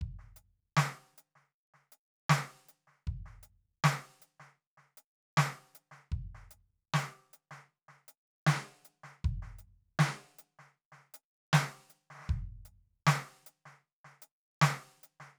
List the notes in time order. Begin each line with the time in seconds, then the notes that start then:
0.01 kick
0.19 snare
0.36 closed hi-hat
0.77 snare
1.18 closed hi-hat
1.35 snare
1.74 snare
1.92 closed hi-hat
2.29 snare
2.69 closed hi-hat
2.87 snare
2.91 snare
3.07 kick
3.26 snare
3.43 closed hi-hat
3.84 snare
4.22 closed hi-hat
4.40 snare
4.77 snare
4.97 closed hi-hat
5.37 snare
5.75 closed hi-hat
5.91 snare
6.12 kick
6.35 snare
6.51 closed hi-hat
6.94 snare
7.00 closed hi-hat
7.33 closed hi-hat
7.51 snare
7.88 snare
8.08 closed hi-hat
8.47 snare
8.85 closed hi-hat
9.04 snare
9.24 kick
9.42 snare
9.59 closed hi-hat
9.99 snare
10.39 closed hi-hat
10.59 snare
10.92 snare
10.97 snare
11.14 closed hi-hat
11.53 snare
11.90 closed hi-hat
12.10 snare
12.15 snare
12.19 snare
12.22 snare
12.25 kick, snare
12.65 closed hi-hat
13.07 snare
13.26 snare
13.46 closed hi-hat
13.66 snare
14.04 snare
14.22 closed hi-hat
14.62 snare
15.03 closed hi-hat
15.20 snare